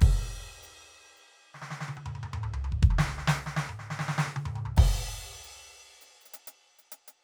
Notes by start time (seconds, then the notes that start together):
0.01 kick, crash
0.63 hi-hat pedal
1.17 hi-hat pedal
1.54 snare
1.62 snare
1.71 snare
1.88 high tom
1.94 hi-hat pedal, high tom
2.06 mid tom
2.15 mid tom
2.23 mid tom
2.33 mid tom
2.43 floor tom
2.54 floor tom
2.64 floor tom
2.72 kick
2.83 kick
2.91 floor tom
2.99 snare
3.08 snare
3.18 snare
3.28 snare
3.46 snare
3.57 snare
3.69 mid tom
3.79 snare
3.91 snare
3.99 snare
4.08 snare
4.18 snare
4.26 high tom
4.36 high tom
4.46 mid tom
4.66 floor tom
4.77 kick, crash
5.44 hi-hat pedal
6.01 hi-hat pedal
6.21 closed hi-hat
6.26 closed hi-hat
6.34 closed hi-hat
6.48 closed hi-hat
6.79 closed hi-hat
6.92 closed hi-hat
7.08 closed hi-hat